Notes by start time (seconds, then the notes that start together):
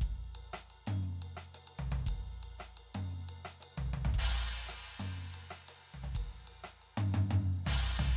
0.01 kick, ride
0.35 ride
0.52 cross-stick, hi-hat pedal
0.70 ride
0.86 mid tom, ride bell
1.02 hi-hat pedal
1.22 ride
1.36 cross-stick
1.54 hi-hat pedal, ride
1.67 ride
1.78 kick, floor tom
1.91 floor tom
2.06 kick, ride
2.43 ride
2.58 cross-stick, hi-hat pedal
2.77 ride
2.94 mid tom, ride
3.08 hi-hat pedal
3.28 ride
3.44 cross-stick
3.60 hi-hat pedal, ride
3.77 floor tom
3.93 floor tom
4.05 floor tom
4.14 kick
4.18 ride
4.65 cross-stick, hi-hat pedal
4.69 ride
4.99 mid tom, ride
5.17 hi-hat pedal
5.34 ride
5.50 cross-stick
5.68 hi-hat pedal, ride
5.82 ride
5.94 floor tom
6.03 floor tom
6.14 kick, hi-hat pedal, ride
6.47 ride
6.63 cross-stick, hi-hat pedal
6.81 ride
6.97 mid tom, ride
7.12 hi-hat pedal, mid tom
7.30 mid tom
7.65 floor tom, hi-hat pedal, ride
7.99 floor tom